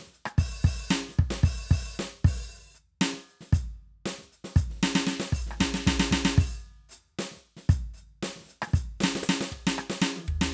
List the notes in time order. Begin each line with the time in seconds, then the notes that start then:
0.01 snare
0.04 snare
0.08 kick, snare
0.11 closed hi-hat, snare
0.26 cross-stick
0.38 open hi-hat, kick
0.65 open hi-hat, kick
0.91 snare, hi-hat pedal
1.10 snare
1.20 kick
1.31 snare
1.44 open hi-hat, kick
1.72 open hi-hat, kick
1.97 kick, snare, hi-hat pedal
2.25 open hi-hat, kick
2.75 hi-hat pedal
3.02 closed hi-hat, snare
3.14 snare
3.17 snare
3.29 closed hi-hat
3.42 snare
3.53 closed hi-hat, kick
4.07 closed hi-hat, snare
4.19 snare
4.24 kick
4.33 closed hi-hat
4.45 snare
4.57 closed hi-hat, kick
4.71 snare
4.76 snare
4.80 snare
4.84 snare
4.96 snare
5.08 snare
5.21 snare
5.33 open hi-hat, kick
5.47 snare
5.52 cross-stick
5.54 cross-stick, snare, hi-hat pedal
5.61 kick, snare
5.75 snare
5.87 kick, snare
6.01 snare
6.12 kick, snare
6.26 snare
6.39 open hi-hat, kick
6.90 closed hi-hat, hi-hat pedal
7.20 closed hi-hat, snare
7.32 snare
7.36 kick, snare
7.57 snare
7.70 closed hi-hat, kick
7.94 closed hi-hat, hi-hat pedal
8.23 closed hi-hat, snare
8.37 snare
8.40 kick, snare
8.43 snare
8.46 snare
8.47 closed hi-hat, snare
8.63 cross-stick
8.68 snare
8.74 closed hi-hat, kick
8.98 snare, hi-hat pedal
9.04 snare
9.16 snare
9.24 hi-hat pedal, high tom
9.30 snare
9.42 snare
9.52 kick, mid tom
9.68 snare
9.79 cross-stick
9.91 snare
10.03 snare
10.17 high tom
10.26 hi-hat pedal, mid tom
10.42 snare